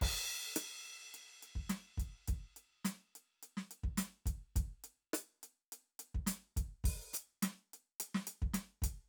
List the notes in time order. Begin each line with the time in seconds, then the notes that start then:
0.02 kick, crash
0.57 cross-stick, closed hi-hat
0.87 closed hi-hat
1.15 closed hi-hat
1.43 closed hi-hat
1.56 kick
1.70 snare, closed hi-hat
1.98 kick, closed hi-hat
2.28 kick, closed hi-hat
2.57 closed hi-hat
2.85 closed hi-hat, snare
3.16 closed hi-hat
3.43 closed hi-hat
3.58 snare
3.71 closed hi-hat
3.84 kick
3.98 closed hi-hat, snare
4.26 kick, closed hi-hat
4.56 kick, closed hi-hat
4.84 closed hi-hat
5.14 closed hi-hat, cross-stick
5.44 closed hi-hat
5.73 closed hi-hat
6.00 closed hi-hat
6.15 kick
6.27 closed hi-hat, snare
6.57 kick, closed hi-hat
6.85 kick, open hi-hat
7.14 hi-hat pedal
7.43 snare, closed hi-hat
7.74 closed hi-hat
8.00 closed hi-hat
8.15 snare
8.28 closed hi-hat
8.42 kick
8.54 snare, closed hi-hat
8.82 kick, closed hi-hat